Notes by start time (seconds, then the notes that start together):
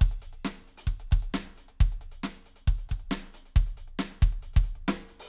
0.01 kick, closed hi-hat
0.12 closed hi-hat
0.23 closed hi-hat
0.34 closed hi-hat
0.45 snare
0.57 closed hi-hat
0.63 kick
0.68 closed hi-hat
0.78 closed hi-hat
0.88 kick, closed hi-hat
1.01 closed hi-hat
1.12 kick, closed hi-hat
1.23 closed hi-hat
1.35 snare
1.48 closed hi-hat
1.58 closed hi-hat
1.69 closed hi-hat
1.81 kick, closed hi-hat
1.93 closed hi-hat
2.02 closed hi-hat
2.12 closed hi-hat
2.24 snare
2.35 closed hi-hat
2.47 closed hi-hat
2.68 kick, closed hi-hat
2.79 closed hi-hat
2.90 kick, closed hi-hat
3.00 closed hi-hat
3.12 snare
3.25 closed hi-hat
3.35 closed hi-hat
3.46 closed hi-hat
3.57 closed hi-hat, kick
3.67 closed hi-hat
3.78 closed hi-hat
3.88 closed hi-hat
4.00 snare
4.12 closed hi-hat
4.23 closed hi-hat, kick
4.33 closed hi-hat
4.43 closed hi-hat
4.54 closed hi-hat, kick
4.64 closed hi-hat
4.76 closed hi-hat
4.89 snare
5.00 closed hi-hat
5.10 closed hi-hat
5.20 open hi-hat